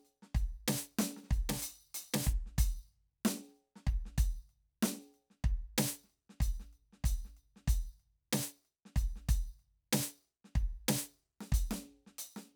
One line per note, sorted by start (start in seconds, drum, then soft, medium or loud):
0.01 snare soft
0.05 closed hi-hat soft
0.23 snare soft
0.35 closed hi-hat soft
0.35 kick medium
0.68 closed hi-hat loud
0.68 snare loud
0.99 closed hi-hat loud
0.99 snare loud
1.17 snare soft
1.24 snare soft
1.27 snare soft
1.29 closed hi-hat soft
1.29 kick medium
1.29 snare soft
1.50 snare loud
1.63 closed hi-hat loud
1.95 closed hi-hat loud
2.14 snare loud
2.27 kick medium
2.47 snare soft
2.59 closed hi-hat loud
2.59 kick medium
3.26 closed hi-hat medium
3.26 snare loud
3.49 snare soft
3.57 closed hi-hat soft
3.76 snare soft
3.87 kick medium
3.87 closed hi-hat soft
4.06 snare soft
4.18 closed hi-hat medium
4.18 kick medium
4.50 closed hi-hat soft
4.83 closed hi-hat loud
4.83 snare loud
5.14 closed hi-hat soft
5.31 snare soft
5.45 kick medium
5.45 closed hi-hat soft
5.78 closed hi-hat loud
5.78 snare loud
6.04 snare soft
6.10 closed hi-hat soft
6.30 snare soft
6.41 closed hi-hat medium
6.41 kick medium
6.60 snare soft
6.73 closed hi-hat soft
6.93 snare soft
7.05 closed hi-hat loud
7.05 kick medium
7.25 snare soft
7.37 closed hi-hat soft
7.57 snare soft
7.68 closed hi-hat loud
7.68 kick medium
8.00 closed hi-hat soft
8.33 closed hi-hat loud
8.33 snare loud
8.66 closed hi-hat soft
8.86 snare soft
8.96 closed hi-hat medium
8.96 kick medium
9.16 snare soft
9.29 closed hi-hat loud
9.29 kick medium
9.60 closed hi-hat soft
9.93 closed hi-hat loud
9.93 snare loud
10.25 closed hi-hat soft
10.45 snare soft
10.56 kick medium
10.56 closed hi-hat soft
10.60 crash soft
10.89 closed hi-hat loud
10.89 snare loud
11.41 snare medium
11.53 closed hi-hat loud
11.53 kick medium
11.71 snare medium
11.85 closed hi-hat soft
12.07 snare soft
12.19 closed hi-hat loud
12.37 snare medium